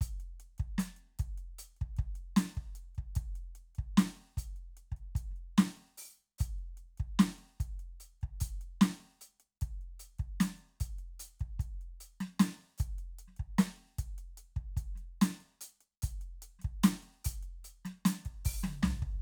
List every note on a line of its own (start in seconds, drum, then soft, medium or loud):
0.01 closed hi-hat medium
0.01 kick medium
0.20 closed hi-hat soft
0.40 closed hi-hat soft
0.58 kick soft
0.58 closed hi-hat soft
0.78 closed hi-hat medium
0.78 snare loud
0.97 closed hi-hat soft
1.19 kick medium
1.19 closed hi-hat medium
1.38 closed hi-hat soft
1.59 closed hi-hat medium
1.77 closed hi-hat soft
1.81 kick soft
1.97 kick medium
1.97 snare soft
1.97 closed hi-hat soft
2.16 closed hi-hat soft
2.37 closed hi-hat medium
2.37 snare loud
2.55 kick soft
2.55 closed hi-hat soft
2.75 closed hi-hat medium
2.95 kick soft
2.95 closed hi-hat soft
3.16 kick medium
3.16 closed hi-hat medium
3.36 closed hi-hat soft
3.55 closed hi-hat soft
3.75 kick soft
3.75 closed hi-hat soft
3.98 closed hi-hat medium
3.98 snare loud
4.17 closed hi-hat soft
4.37 closed hi-hat medium
4.37 kick medium
4.56 closed hi-hat soft
4.77 closed hi-hat soft
4.92 kick soft
4.97 closed hi-hat soft
5.15 kick medium
5.15 closed hi-hat medium
5.31 snare soft
5.36 closed hi-hat soft
5.58 closed hi-hat medium
5.58 snare loud
5.77 closed hi-hat soft
5.98 open hi-hat loud
6.39 closed hi-hat medium
6.39 kick medium
6.39 hi-hat pedal medium
6.59 closed hi-hat soft
6.77 closed hi-hat soft
6.98 kick soft
6.98 closed hi-hat soft
7.19 closed hi-hat medium
7.19 snare loud
7.38 closed hi-hat soft
7.60 kick medium
7.60 closed hi-hat medium
7.80 closed hi-hat soft
8.00 closed hi-hat medium
8.21 kick soft
8.21 closed hi-hat soft
8.41 closed hi-hat loud
8.41 kick soft
8.61 closed hi-hat soft
8.81 closed hi-hat medium
8.81 snare loud
9.00 closed hi-hat soft
9.21 closed hi-hat medium
9.40 closed hi-hat soft
9.61 kick soft
9.61 closed hi-hat medium
9.81 closed hi-hat soft
10.00 closed hi-hat medium
10.19 kick soft
10.19 closed hi-hat soft
10.40 closed hi-hat loud
10.40 snare loud
10.58 closed hi-hat soft
10.80 closed hi-hat medium
10.80 kick medium
10.99 closed hi-hat soft
11.20 closed hi-hat medium
11.40 kick soft
11.40 closed hi-hat soft
11.60 kick soft
11.60 closed hi-hat medium
11.81 closed hi-hat soft
12.01 closed hi-hat medium
12.21 snare medium
12.21 closed hi-hat medium
12.40 closed hi-hat loud
12.40 snare loud
12.78 kick medium
12.78 closed hi-hat medium
12.78 hi-hat pedal medium
12.99 closed hi-hat soft
13.19 closed hi-hat medium
13.28 snare soft
13.37 kick soft
13.37 closed hi-hat soft
13.59 closed hi-hat loud
13.59 snare loud
13.76 closed hi-hat soft
13.99 kick medium
13.99 closed hi-hat medium
14.18 closed hi-hat soft
14.38 closed hi-hat medium
14.56 kick soft
14.56 closed hi-hat soft
14.77 kick soft
14.77 closed hi-hat medium
14.95 snare soft
14.95 closed hi-hat soft
15.22 closed hi-hat loud
15.22 snare loud
15.41 closed hi-hat soft
15.61 closed hi-hat loud
15.81 closed hi-hat soft
16.02 closed hi-hat medium
16.02 kick medium
16.21 closed hi-hat soft
16.42 closed hi-hat medium
16.59 snare soft
16.59 closed hi-hat soft
16.64 kick soft
16.84 closed hi-hat loud
16.84 snare loud
17.03 closed hi-hat soft
17.25 closed hi-hat loud
17.25 kick medium
17.43 closed hi-hat soft
17.63 closed hi-hat medium
17.63 snare soft
17.85 snare soft
17.85 closed hi-hat medium
18.05 closed hi-hat loud
18.05 snare loud
18.25 kick soft
18.25 closed hi-hat soft
18.44 open hi-hat loud
18.44 kick medium
18.44 snare soft
18.64 snare medium
18.64 high tom loud
18.83 snare loud
18.83 floor tom loud
19.02 kick medium